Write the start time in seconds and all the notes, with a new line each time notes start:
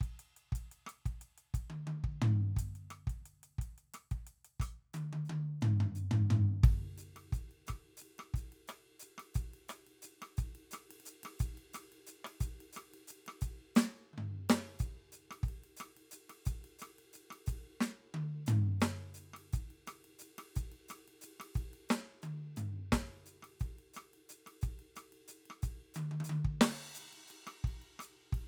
0.01 kick, closed hi-hat
0.19 closed hi-hat
0.37 closed hi-hat
0.52 kick, closed hi-hat
0.72 closed hi-hat
0.87 cross-stick, closed hi-hat
1.06 kick, closed hi-hat
1.21 closed hi-hat
1.38 closed hi-hat
1.54 kick, closed hi-hat
1.70 high tom
1.87 high tom
2.04 kick
2.22 floor tom
2.57 kick, closed hi-hat
2.75 closed hi-hat
2.90 cross-stick, closed hi-hat
3.07 kick, closed hi-hat
3.26 closed hi-hat
3.43 closed hi-hat
3.58 kick, closed hi-hat
3.78 closed hi-hat
3.94 cross-stick, closed hi-hat
4.11 kick, closed hi-hat
4.27 closed hi-hat
4.45 closed hi-hat
4.60 closed hi-hat, kick, cross-stick
4.94 hi-hat pedal, high tom
5.13 high tom
5.25 hi-hat pedal
5.30 high tom
5.61 floor tom, hi-hat pedal
5.80 floor tom
5.95 hi-hat pedal
6.11 floor tom
6.30 floor tom
6.64 kick, ride
6.98 hi-hat pedal, ride
7.16 cross-stick, ride
7.32 kick, hi-hat pedal, ride
7.51 ride
7.67 kick, cross-stick, hi-hat pedal, ride
7.97 hi-hat pedal
8.02 ride
8.18 cross-stick, ride
8.34 kick, hi-hat pedal, ride
8.52 ride
8.67 cross-stick, hi-hat pedal, ride
9.00 hi-hat pedal, ride
9.18 cross-stick, ride
9.34 kick, hi-hat pedal, ride
9.54 ride
9.69 cross-stick, hi-hat pedal, ride
9.87 ride
10.02 hi-hat pedal, ride
10.22 cross-stick, ride
10.37 kick, hi-hat pedal, ride
10.55 ride
10.71 cross-stick, hi-hat pedal, ride
10.91 ride
11.00 ride
11.05 hi-hat pedal, ride
11.23 cross-stick, ride
11.39 kick, hi-hat pedal, ride
11.57 ride
11.73 cross-stick, hi-hat pedal, ride
11.92 ride
12.07 hi-hat pedal, ride
12.25 cross-stick, ride
12.40 kick, hi-hat pedal, ride
12.60 ride
12.73 cross-stick, hi-hat pedal
12.77 ride
12.94 ride
13.07 hi-hat pedal, ride
13.26 cross-stick, ride
13.41 kick, hi-hat pedal, ride
13.75 snare, hi-hat pedal
14.13 high tom
14.18 floor tom
14.49 snare, ride
14.79 kick, hi-hat pedal
14.84 ride
15.12 hi-hat pedal, ride
15.31 cross-stick, ride
15.43 kick, hi-hat pedal
15.49 ride
15.64 ride
15.77 cross-stick, hi-hat pedal
15.81 ride
15.97 ride
16.11 hi-hat pedal, ride
16.29 cross-stick, ride
16.45 kick, hi-hat pedal, ride
16.64 ride
16.79 cross-stick, hi-hat pedal, ride
16.99 ride
17.13 hi-hat pedal, ride
17.30 cross-stick, ride
17.46 kick, hi-hat pedal, ride
17.81 snare
18.14 high tom
18.46 floor tom, hi-hat pedal
18.81 snare, hi-hat pedal, ride
19.14 hi-hat pedal
19.18 ride
19.33 cross-stick, ride
19.53 kick, hi-hat pedal, ride
19.70 ride
19.87 cross-stick, hi-hat pedal, ride
20.04 ride
20.19 hi-hat pedal, ride
20.38 cross-stick, ride
20.56 kick, hi-hat pedal, ride
20.72 ride
20.88 cross-stick, hi-hat pedal, ride
21.08 ride
21.21 hi-hat pedal, ride
21.40 cross-stick, ride
21.54 kick, hi-hat pedal, ride
21.73 ride
21.89 snare, hi-hat pedal
22.22 hi-hat pedal, high tom
22.56 floor tom, hi-hat pedal
22.92 kick, snare, ride
23.26 hi-hat pedal, ride
23.42 cross-stick, ride
23.60 kick, hi-hat pedal, ride
23.79 ride
23.94 cross-stick, hi-hat pedal, ride
24.13 ride
24.29 hi-hat pedal, ride
24.46 cross-stick, ride
24.61 kick, hi-hat pedal, ride
24.79 ride
24.96 cross-stick, hi-hat pedal, ride
25.12 ride
25.28 hi-hat pedal, ride
25.46 ride
25.50 cross-stick
25.62 kick, hi-hat pedal, ride
25.94 hi-hat pedal, high tom
26.11 high tom
26.20 high tom
26.24 hi-hat pedal
26.29 high tom
26.45 kick
26.61 snare, crash
26.94 hi-hat pedal, ride
27.13 ride
27.28 hi-hat pedal, ride
27.47 cross-stick, ride
27.64 kick, ride
27.82 ride
27.99 cross-stick, hi-hat pedal, ride
28.33 kick, ride